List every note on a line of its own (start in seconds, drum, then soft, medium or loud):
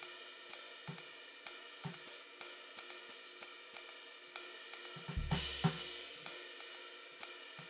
0.01 hi-hat pedal soft
0.01 ride loud
0.50 hi-hat pedal loud
0.54 ride loud
0.88 snare soft
0.88 ride medium
0.94 hi-hat pedal soft
0.98 ride medium
1.46 hi-hat pedal loud
1.46 ride loud
1.84 snare soft
1.84 ride medium
1.94 ride medium
2.07 hi-hat pedal loud
2.41 hi-hat pedal loud
2.41 ride loud
2.77 hi-hat pedal loud
2.77 ride medium
2.91 ride medium
3.09 hi-hat pedal loud
3.41 hi-hat pedal loud
3.41 ride medium
3.73 hi-hat pedal loud
3.73 ride loud
3.89 ride medium
4.27 snare soft
4.36 ride loud
4.74 ride loud
4.85 ride medium
4.96 snare soft
5.08 snare soft
5.17 kick medium
5.31 snare medium
5.31 ride loud
5.64 snare medium
5.79 ride medium
6.15 snare soft
6.19 snare soft
6.22 snare soft
6.26 hi-hat pedal loud
6.26 ride loud
6.61 ride medium
6.70 hi-hat pedal soft
6.75 ride medium
7.11 snare soft
7.20 hi-hat pedal loud
7.20 ride loud
7.58 snare soft
7.58 ride medium
7.64 hi-hat pedal soft